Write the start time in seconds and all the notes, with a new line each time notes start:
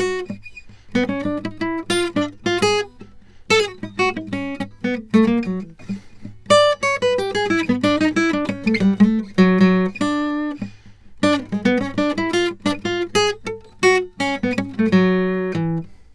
0.00 F#4
0.96 B3
1.10 C#4
1.22 D4
1.45 D#4
1.62 E4
1.90 F4
2.17 D4
2.47 F4
2.59 F4 G#4
3.51 A4
3.61 G#4
3.73 F#4
3.84 E4
4.00 F#4
4.17 E4
4.33 C#4
4.61 C#4
4.85 B3
5.14 A3
5.25 A#3
5.45 F#3
6.51 D5
6.84 C#5
7.03 B4
7.19 G4
7.36 G#4
7.51 E4
7.70 B3
7.84 D4
8.02 D#4
8.17 E4
8.30 D4
8.50 C#4
8.65 A3
8.81 G3
9.01 A3
9.38 F#3
9.62 F#3
10.01 D4
11.23 D4
11.53 G#3
11.66 B3
11.78 C#4
11.98 D4
12.18 E4
12.35 F4
12.66 D4
12.86 F4
13.15 G#4
13.47 A4
13.83 F#4
14.21 C#4
14.44 B3
14.58 C#4
14.93 F#3
15.56 E3